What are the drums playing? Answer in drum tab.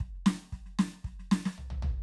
SD |ggogggogggoo----|
FT |------------ooo-|
BD |o---g---o-------|